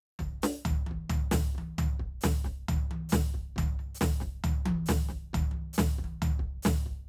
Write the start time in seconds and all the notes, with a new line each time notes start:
0.19 kick, floor tom
0.42 snare, hi-hat pedal
0.65 kick, floor tom
0.86 high tom
0.91 kick
1.10 floor tom
1.15 kick
1.31 snare, floor tom, hi-hat pedal
1.55 kick, high tom
1.78 floor tom
1.99 kick
2.21 snare, floor tom, hi-hat pedal
2.44 kick, snare
2.68 kick, floor tom
2.91 high tom
3.09 snare, floor tom, hi-hat pedal
3.34 kick
3.56 kick, floor tom
3.79 floor tom
3.95 hi-hat pedal
4.01 snare, floor tom
4.20 kick, snare
4.44 floor tom
4.66 kick, high tom
4.86 snare, floor tom, hi-hat pedal
5.09 kick, snare
5.33 kick, floor tom
5.51 high tom
5.73 hi-hat pedal
5.78 snare, floor tom
5.98 kick
6.04 high tom
6.22 floor tom
6.39 kick
6.62 snare, floor tom, hi-hat pedal
6.86 kick